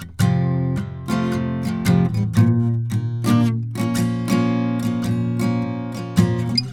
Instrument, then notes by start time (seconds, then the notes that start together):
acoustic guitar
0.21 F2 C3 F3
0.78 F2 C3
1.10 C3 F3 A3 F4
1.34 F2 C3
1.65 C3 F3 A3
1.70 F2
1.87 F2 C3 F3 A3
2.07 F2 A2
2.38 A#2
2.92 A#2 A#3
3.26 A#3 D4
3.31 A#2
3.77 A#3 C#4
3.83 A#2
3.98 A#2 F3 A#3
4.04 C#4
4.30 F3 A#3 C#4
4.34 A#2
4.81 A#3 C#4
4.87 A#2 F3
5.07 A#2 F3 A#3
5.13 C#4
5.41 A#2 F3 A#3 C#4
5.65 A#2
5.94 A#3 C#4
5.99 A#2 F3
6.19 F2 A#2 F3 A#3 C#4